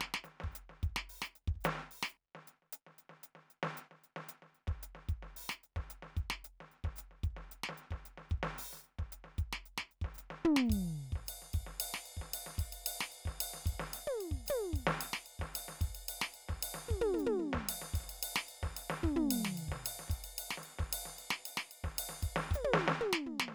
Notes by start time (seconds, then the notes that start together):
0.01 snare
0.14 snare
0.24 snare, hi-hat pedal
0.40 kick, snare
0.51 kick, hi-hat pedal
0.55 closed hi-hat
0.70 snare
0.83 kick, closed hi-hat
0.90 kick
0.96 snare
1.09 open hi-hat
1.22 snare, hi-hat pedal
1.35 closed hi-hat
1.48 kick
1.54 kick
1.61 closed hi-hat, hi-hat pedal
1.65 snare
1.75 snare
1.91 open hi-hat
2.03 snare
2.09 hi-hat pedal
2.35 snare
2.47 closed hi-hat
2.62 snare
2.73 closed hi-hat
2.87 snare
2.98 closed hi-hat
3.10 snare
3.23 closed hi-hat
3.35 snare
3.50 closed hi-hat
3.63 snare
3.77 closed hi-hat
3.91 snare
4.04 closed hi-hat
4.16 snare
4.29 closed hi-hat
4.42 snare
4.55 closed hi-hat
4.67 kick, snare
4.83 closed hi-hat
4.95 snare
5.09 kick, closed hi-hat
5.23 snare
5.37 open hi-hat
5.49 snare, hi-hat pedal
5.64 closed hi-hat
5.76 kick, snare
5.90 closed hi-hat
6.03 snare
6.17 kick, closed hi-hat
6.23 kick
6.30 snare
6.45 closed hi-hat
6.61 snare
6.72 closed hi-hat
6.84 kick, snare
6.96 closed hi-hat, hi-hat pedal
7.11 snare
7.24 closed hi-hat, kick
7.31 kick
7.37 snare
7.52 closed hi-hat
7.64 snare
7.69 snare
7.78 closed hi-hat
7.91 kick, snare
8.06 closed hi-hat
8.18 snare
8.30 closed hi-hat, kick
8.38 kick
8.43 snare
8.58 open hi-hat
8.73 snare
8.78 hi-hat pedal
8.84 closed hi-hat
8.99 kick, snare
9.12 closed hi-hat
9.24 snare
9.38 closed hi-hat, kick
9.53 snare
9.66 closed hi-hat
9.77 kick, snare
9.91 closed hi-hat
10.02 kick, snare
10.14 hi-hat pedal
10.18 closed hi-hat
10.30 snare
10.44 floor tom
10.57 snare
10.65 hi-hat pedal
10.70 kick, ride
10.75 kick
11.12 kick, snare
11.26 hi-hat pedal, ride
11.42 snare
11.53 kick, ride
11.61 kick
11.67 snare
11.80 hi-hat pedal, ride bell
11.94 snare
12.06 ride
12.17 kick
12.22 snare
12.34 hi-hat pedal, ride bell
12.47 snare
12.55 kick, snare
12.59 ride
12.73 ride
12.86 hi-hat pedal, ride bell
13.01 snare
13.12 ride
13.25 kick, snare
13.41 hi-hat pedal, ride bell
13.54 snare
13.66 kick, ride
13.73 kick
13.80 snare
13.93 hi-hat pedal, ride bell
14.07 high tom
14.21 ride bell
14.31 kick
14.37 kick
14.46 hi-hat pedal, high tom, ride bell
14.73 kick, ride
14.79 kick
14.87 snare
15.01 hi-hat pedal, ride bell
15.13 snare
15.26 ride
15.39 kick, snare
15.55 hi-hat pedal, ride
15.68 snare
15.78 kick, snare, ride
15.88 kick
15.95 ride
16.09 hi-hat pedal, ride bell
16.22 snare
16.34 ride
16.49 kick, snare
16.55 kick
16.63 hi-hat pedal, ride bell
16.74 snare
16.88 kick, mid tom
17.01 mid tom
17.14 mid tom
17.19 hi-hat pedal
17.26 mid tom
17.39 mid tom
17.53 kick, snare
17.69 hi-hat pedal, ride bell
17.82 snare
17.94 kick, snare, ride
18.00 kick, snare
18.04 snare
18.09 snare, ride
18.23 hi-hat pedal, ride bell
18.36 snare
18.49 ride
18.63 kick, snare
18.68 kick
18.77 hi-hat pedal, ride bell
18.90 snare
19.03 kick, floor tom
19.10 kick
19.16 floor tom
19.31 hi-hat pedal, ride bell
19.45 snare
19.57 ride
19.68 kick, snare
19.85 hi-hat pedal, ride
19.99 snare
20.08 kick, snare, ride
20.24 ride
20.38 hi-hat pedal, ride bell
20.51 snare
20.58 snare
20.63 ride
20.79 kick, snare
20.93 hi-hat pedal, ride bell
21.06 snare
21.19 ride
21.31 snare
21.46 hi-hat pedal, ride
21.57 snare
21.71 ride
21.84 kick, snare
21.98 hi-hat pedal, ride bell
22.09 snare
22.23 kick, ride
22.36 snare
22.51 kick, hi-hat pedal
22.55 high tom
22.64 high tom
22.74 snare
22.88 snare
23.01 mid tom
23.13 snare
23.26 floor tom
23.40 snare
23.48 snare